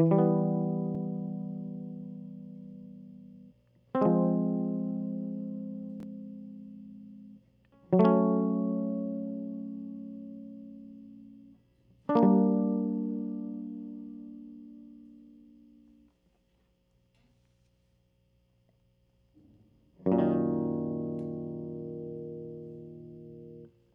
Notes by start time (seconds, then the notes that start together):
0.00 E3
0.12 G3
0.19 B3
3.95 C4
4.02 G#3
4.06 F3
7.94 F#3
8.00 A3
8.05 C#4
12.10 D4
12.16 A#3
12.24 G3
20.08 F#2
20.13 A#2
20.20 D#3